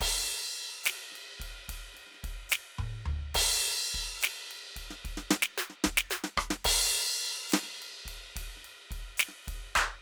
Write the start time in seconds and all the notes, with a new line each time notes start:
0.01 kick, crash
0.07 kick
0.18 snare
0.24 snare
0.28 snare
0.56 ride
0.84 snare, hi-hat pedal, ride
1.12 snare, ride
1.39 kick, snare, ride
1.69 kick, ride
1.94 snare, ride
2.07 snare
2.12 snare
2.15 snare
2.24 kick, ride
2.50 snare, hi-hat pedal, ride
2.79 kick, mid tom
3.06 kick, floor tom
3.35 kick, crash
3.42 kick
3.75 snare
3.80 snare
3.83 snare
3.86 snare
3.89 snare
3.95 kick, ride
4.21 snare, hi-hat pedal, ride
4.51 ride
4.77 kick, ride
4.91 snare
5.05 kick, ride
5.18 snare
5.31 snare, hi-hat pedal
5.43 snare
5.56 snare, hi-hat pedal
5.70 snare
5.84 kick, snare
5.98 snare
6.11 snare, hi-hat pedal
6.24 snare
6.37 kick, cross-stick
6.51 snare
6.65 kick, crash
6.72 kick
7.26 ride
7.50 hi-hat pedal, ride
7.54 snare
7.64 snare
7.76 hi-hat pedal
7.82 ride
8.06 kick, ride
8.36 kick, ride
8.42 kick
8.57 snare
8.62 snare, ride
8.74 snare
8.91 kick, snare, ride
8.99 kick
9.18 snare, hi-hat pedal, ride
9.29 snare
9.45 kick, hi-hat pedal, ride
9.56 snare
9.76 kick, percussion